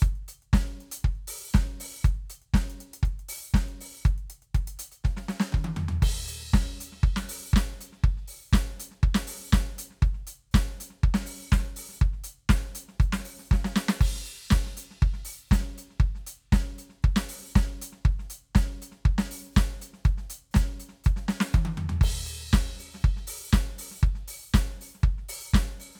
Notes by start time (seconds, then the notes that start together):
0.01 kick, closed hi-hat, hi-hat pedal
0.16 closed hi-hat
0.22 kick
0.28 closed hi-hat
0.42 closed hi-hat
0.53 kick, snare
0.68 closed hi-hat
0.81 closed hi-hat
0.92 closed hi-hat
1.04 kick, closed hi-hat
1.16 closed hi-hat
1.28 open hi-hat
1.42 open hi-hat
1.53 kick, snare, hi-hat pedal
1.80 open hi-hat
1.95 open hi-hat
2.02 kick, closed hi-hat, hi-hat pedal
2.15 closed hi-hat
2.26 kick
2.30 closed hi-hat
2.42 closed hi-hat
2.54 kick, snare
2.70 closed hi-hat
2.81 closed hi-hat
2.94 closed hi-hat
3.03 kick, closed hi-hat
3.19 closed hi-hat
3.29 open hi-hat
3.44 open hi-hat
3.51 kick, snare, hi-hat pedal
3.69 closed hi-hat
3.81 open hi-hat
3.95 open hi-hat
4.02 kick, hi-hat pedal
4.06 closed hi-hat
4.18 closed hi-hat
4.30 closed hi-hat
4.42 closed hi-hat
4.55 kick, closed hi-hat
4.68 closed hi-hat
4.77 closed hi-hat, kick
4.92 closed hi-hat
5.04 kick, snare
5.17 snare
5.29 snare
5.40 snare
5.53 kick, high tom
5.65 high tom
5.77 floor tom
5.89 floor tom
6.03 kick, crash
6.28 closed hi-hat
6.52 kick, snare, hi-hat pedal
6.61 snare
6.81 closed hi-hat
6.92 snare
7.03 kick, closed hi-hat
7.16 snare
7.24 snare
7.29 open hi-hat
7.50 kick, hi-hat pedal
7.56 snare, closed hi-hat
7.81 closed hi-hat
7.93 snare
8.04 kick, closed hi-hat
8.17 snare
8.28 open hi-hat
8.50 kick, hi-hat pedal
8.54 closed hi-hat, snare
8.70 snare
8.80 closed hi-hat
8.91 snare
9.03 kick, closed hi-hat
9.15 snare
9.27 open hi-hat
9.50 kick, snare, hi-hat pedal
9.56 closed hi-hat
9.60 snare
9.69 snare
9.71 snare
9.79 closed hi-hat
9.91 snare
9.95 snare
10.03 closed hi-hat, kick
10.14 snare
10.27 open hi-hat
10.52 kick, snare, hi-hat pedal
10.56 closed hi-hat
10.81 closed hi-hat
10.90 snare
11.03 kick, closed hi-hat
11.14 snare
11.21 snare
11.26 open hi-hat
11.49 kick, snare, closed hi-hat, hi-hat pedal
11.60 snare
11.71 snare
11.76 open hi-hat
11.89 snare
11.92 snare
11.94 snare, hi-hat pedal
12.01 kick, closed hi-hat
12.13 snare
12.17 snare
12.24 closed hi-hat
12.49 kick, snare, closed hi-hat
12.75 closed hi-hat
12.89 snare
13.00 closed hi-hat, kick
13.13 snare
13.19 snare
13.25 open hi-hat
13.39 snare
13.47 hi-hat pedal
13.51 kick, snare
13.65 snare
13.76 snare
13.89 snare
14.01 kick, crash
14.15 snare
14.21 kick
14.26 closed hi-hat
14.51 kick, snare
14.66 snare
14.77 closed hi-hat
14.91 snare
15.01 kick, closed hi-hat
15.14 snare
15.25 open hi-hat
15.47 kick, hi-hat pedal
15.52 closed hi-hat, snare
15.60 snare
15.78 closed hi-hat
15.90 snare
16.00 kick, closed hi-hat
16.15 snare
16.27 closed hi-hat
16.53 kick, snare, closed hi-hat
16.79 closed hi-hat
16.90 snare
17.03 kick, closed hi-hat
17.16 snare
17.29 open hi-hat
17.53 kick, snare, hi-hat pedal
17.57 closed hi-hat
17.63 snare
17.82 closed hi-hat
17.93 snare
18.05 kick, closed hi-hat
18.19 snare
18.30 closed hi-hat
18.55 closed hi-hat, kick, snare
18.82 closed hi-hat
18.92 snare
19.06 kick, closed hi-hat
19.18 snare
19.26 snare
19.31 open hi-hat
19.53 kick, snare, hi-hat pedal
19.59 closed hi-hat
19.82 closed hi-hat
19.94 snare
20.05 closed hi-hat, kick
20.18 snare
20.30 closed hi-hat
20.51 snare, hi-hat pedal
20.56 closed hi-hat, kick
20.80 closed hi-hat
20.89 snare
21.04 closed hi-hat, kick
21.17 snare
21.29 snare
21.41 snare
21.53 kick, hi-hat pedal, high tom
21.65 high tom
21.78 floor tom
21.90 floor tom
22.01 kick, crash
22.20 snare
22.26 closed hi-hat
22.51 kick, snare, hi-hat pedal
22.79 open hi-hat
22.95 snare
23.00 hi-hat pedal
23.04 kick, closed hi-hat
23.17 snare
23.27 open hi-hat
23.50 kick, snare, hi-hat pedal
23.54 closed hi-hat
23.79 open hi-hat
23.91 snare
23.99 hi-hat pedal
24.03 kick, closed hi-hat
24.15 snare
24.28 open hi-hat
24.51 kick, snare, hi-hat pedal
24.56 closed hi-hat
24.70 snare
24.81 open hi-hat
24.95 snare
25.00 kick, snare, hi-hat pedal
25.05 closed hi-hat
25.18 snare
25.29 open hi-hat
25.49 hi-hat pedal
25.54 kick, snare, closed hi-hat
25.62 snare
25.68 snare
25.70 snare
25.76 open hi-hat, snare
25.96 snare